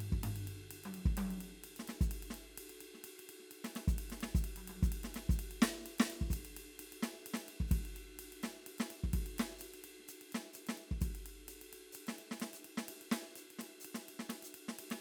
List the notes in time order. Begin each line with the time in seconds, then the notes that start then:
0.01 ride
0.13 kick
0.24 floor tom, ride
0.36 ride
0.48 ride
0.71 ride
0.84 high tom, ride
0.95 ride
1.06 kick
1.17 high tom, ride
1.31 ride
1.41 ride
1.64 ride
1.77 snare, ride
1.88 snare, ride
2.01 kick, hi-hat pedal
2.12 ride
2.23 ride
2.31 snare, ride
2.58 ride
2.70 ride
2.81 ride
2.95 snare
3.03 snare, ride
3.20 ride
3.29 ride
3.40 snare
3.51 ride
3.65 snare, ride
3.76 snare, ride
3.88 kick, hi-hat pedal
3.99 ride
4.11 snare, ride
4.21 snare, ride
4.35 kick, hi-hat pedal
4.45 ride
4.57 high tom, ride
4.68 high tom, ride
4.83 kick, hi-hat pedal
4.92 ride
5.04 snare, ride
5.15 snare, ride
5.30 kick, hi-hat pedal
5.39 ride
5.51 ride
5.62 snare, ride
5.86 ride
5.99 snare, ride
6.10 ride
6.22 kick
6.31 kick, hi-hat pedal, ride
6.45 ride
6.57 ride
6.80 ride
6.93 ride
7.03 snare, ride
7.26 ride
7.34 snare, ride
7.49 ride
7.61 kick
7.68 kick, hi-hat pedal, ride
7.86 ride
7.97 ride
8.19 ride
8.33 ride
8.43 snare, ride
8.67 ride
8.79 snare, ride
8.91 ride
9.04 kick
9.14 kick, ride
9.26 ride
9.39 snare, ride
9.59 hi-hat pedal, ride
9.74 ride
10.00 snare
10.08 hi-hat pedal, ride
10.22 ride
10.30 hi-hat pedal, ride
10.35 snare
10.54 hi-hat pedal, ride
10.67 snare, ride
10.78 ride
10.92 kick
11.01 kick, hi-hat pedal, ride
11.15 ride
11.26 ride
11.49 hi-hat pedal, ride
11.62 ride
11.73 ride
11.93 hi-hat pedal, ride
12.07 snare, ride
12.19 ride
12.31 snare
12.40 snare, ride
12.54 hi-hat pedal, ride
12.65 ride
12.78 snare
12.89 ride
13.02 ride
13.12 snare, ride
13.36 hi-hat pedal, ride
13.51 ride
13.59 snare, ride
13.80 hi-hat pedal
13.85 ride
13.95 snare, ride
14.09 ride
14.20 snare
14.31 ride
14.43 hi-hat pedal, ride
14.55 ride
14.69 snare
14.79 ride
14.91 snare, ride